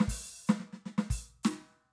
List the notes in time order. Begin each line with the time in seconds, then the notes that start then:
0.01 snare
0.08 open hi-hat, kick
0.48 snare, hi-hat pedal
0.60 snare
0.73 snare
0.86 snare
0.98 snare
1.11 open hi-hat, kick
1.44 snare, hi-hat pedal